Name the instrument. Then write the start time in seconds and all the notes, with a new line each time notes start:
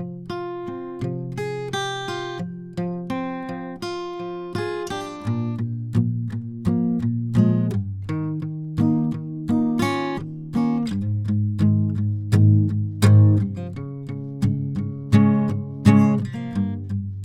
acoustic guitar
0.00 F3
0.31 F4
0.70 C4
1.03 C3 F3
1.39 G#4
1.75 G4
2.10 F4
2.41 F3
2.79 F3
3.11 C4
3.50 F3
3.84 F4
4.21 F3
4.57 F4 G#4
4.89 D4 G4
5.29 A#2
5.60 A#2
5.96 A#2 F3 A#3
6.30 F3
6.34 A#2
6.66 A#2 F3 A#3
7.01 A#2 F3
7.36 A#2 F3
7.41 G#3
7.72 G2
8.10 D#3
8.44 D#3
8.79 D#3 A#3 D#4 F4
9.13 D#3 A#3
9.50 A#3 D#4 F4
9.81 A#3 C#4 F4
10.17 A#3 F4
10.22 D#3
10.55 D#3 A#3 C#4 F4
10.92 G#2
11.26 G#2
11.60 G#2 D#3 G#3
11.97 G#2 D#3
12.34 G#2 D#3 G#3
12.70 G#2 D#3
13.04 G#2 D#3 G#3
13.39 G2 C3
13.59 F3
13.78 C#3
14.09 C#3 G#3
14.44 G2 C#3 G#3
14.77 G2 C#3 G#3
15.14 C#3 G#3 C#4
15.50 G2 C#3 G#3
15.87 G2 C#3 G#3 C#4
16.18 C3
16.36 A#3
16.57 G2
16.91 G2